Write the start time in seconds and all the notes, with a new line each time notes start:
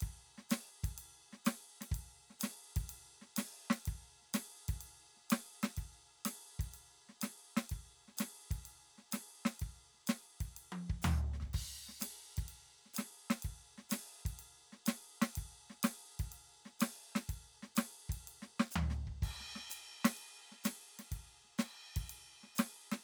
0.01 kick, ride
0.38 snare
0.50 snare, hi-hat pedal, ride
0.84 kick, ride
0.98 ride
1.33 snare
1.45 snare, hi-hat pedal, ride
1.81 snare, ride
1.92 kick, ride
2.30 snare
2.40 snare, hi-hat pedal, ride
2.76 kick, ride
2.88 hi-hat pedal, ride
3.22 snare
3.36 snare, hi-hat pedal, ride
3.70 snare, ride
3.86 kick, ride
4.22 snare
4.34 snare, hi-hat pedal, ride
4.69 kick, ride
4.81 ride
5.17 snare
5.30 snare, hi-hat pedal, ride
5.63 snare, ride
5.77 kick, ride
6.25 snare, hi-hat pedal, ride
6.59 kick, ride
6.71 hi-hat pedal, ride
7.09 snare
7.21 snare, hi-hat pedal, ride
7.57 snare, ride
7.70 kick, ride
8.08 snare
8.17 snare, hi-hat pedal, ride
8.51 kick, ride
8.63 hi-hat pedal, ride
8.98 snare
9.12 snare, hi-hat pedal, ride
9.46 snare, ride
9.60 kick, ride
9.94 snare
10.07 snare, hi-hat pedal, ride
10.41 kick, ride
10.57 ride
10.72 high tom
10.90 kick
11.02 floor tom, hi-hat pedal
11.34 snare
11.40 kick, snare
11.43 snare
11.46 snare
11.50 snare, crash
11.54 kick
11.89 snare
12.00 snare, hi-hat pedal, ride
12.37 kick, ride
12.48 hi-hat pedal, ride
12.86 snare
12.94 hi-hat pedal, ride
12.99 snare
13.30 snare, ride
13.43 kick, ride
13.78 snare
13.90 snare, hi-hat pedal, ride
14.26 kick, ride
14.39 ride
14.73 snare
14.86 snare, hi-hat pedal, ride
15.22 snare, ride
15.36 kick, ride
15.70 snare
15.83 snare, hi-hat pedal, ride
16.20 kick, ride
16.32 ride
16.66 snare
16.80 snare, hi-hat pedal, ride
17.16 snare, ride
17.29 kick, ride
17.63 snare
17.76 snare, hi-hat pedal, ride
18.10 kick, ride
18.28 ride
18.42 snare
18.60 snare
18.71 hi-hat pedal
18.76 floor tom
18.91 snare
19.07 kick
19.23 kick, ride
19.41 snare
19.56 snare
19.70 hi-hat pedal, ride
20.05 snare, ride
20.17 ride
20.52 snare
20.64 snare, hi-hat pedal, ride
20.99 snare, ride
21.09 kick, hi-hat pedal, ride
21.44 snare
21.59 snare, hi-hat pedal, ride
21.96 kick, ride
22.01 snare
22.06 hi-hat pedal, ride
22.43 snare
22.56 snare, hi-hat pedal, ride
22.92 snare, ride